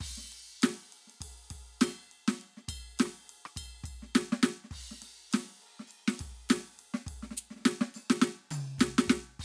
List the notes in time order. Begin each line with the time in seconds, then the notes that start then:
0.01 kick, crash
0.11 kick
0.18 snare
0.24 snare
0.29 snare, ride
0.62 snare, ride, percussion
0.73 snare
0.93 ride
1.08 snare, ride
1.14 snare
1.20 kick, ride, percussion
1.51 kick, ride
1.60 kick
1.81 snare, ride bell, percussion
1.89 snare
2.12 ride
2.28 snare
2.36 percussion
2.42 ride
2.58 snare
2.69 kick, snare, ride bell
2.75 kick
2.80 kick
2.98 snare, ride, percussion
3.06 cross-stick
3.30 ride
3.46 cross-stick
3.56 kick, ride bell, percussion
3.63 kick
3.66 kick
3.84 kick, ride bell
3.91 kick
4.03 snare
4.15 snare, percussion
4.33 snare
4.42 snare, percussion
4.65 snare
4.69 kick, percussion, crash
4.77 kick
4.81 kick
4.92 snare
5.02 snare, ride
5.32 snare, ride, percussion
5.59 percussion, ride
5.80 snare
5.88 ride, percussion
6.08 snare
6.20 kick, ride
6.28 kick
6.31 kick
6.50 snare, ride, percussion
6.59 snare
6.80 ride
6.94 snare
7.07 kick, ride
7.14 kick
7.17 kick
7.23 snare
7.31 snare
7.37 floor tom
7.51 snare
7.56 snare
7.66 snare
7.81 snare
7.95 snare, percussion
8.11 snare
8.22 snare
8.51 mid tom, percussion
8.79 kick, snare, percussion
8.99 snare
9.08 kick, snare
9.40 kick, crash